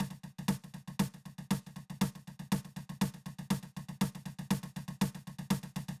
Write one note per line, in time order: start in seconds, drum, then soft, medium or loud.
0.00 snare medium
0.11 snare soft
0.24 snare soft
0.39 snare soft
0.49 snare loud
0.64 snare soft
0.88 snare soft
1.00 snare loud
1.14 snare soft
1.26 snare soft
1.39 snare soft
1.51 snare loud
1.67 snare soft
1.76 snare soft
1.90 snare soft
2.02 snare loud
2.16 snare soft
2.28 snare soft
2.40 snare soft
2.52 snare loud
2.65 snare soft
2.77 snare medium
2.90 snare soft
3.02 snare loud
3.14 snare soft
3.26 snare medium
3.39 snare soft
3.51 snare loud
3.63 snare soft
3.77 snare medium
3.89 snare soft
4.01 snare loud
4.15 snare soft
4.26 snare medium
4.39 snare medium
4.51 snare loud
4.63 snare medium
4.77 snare medium
4.88 snare medium
5.02 snare loud
5.15 snare soft
5.27 snare soft
5.39 snare medium
5.51 snare loud
5.63 snare medium
5.76 snare medium
5.89 snare medium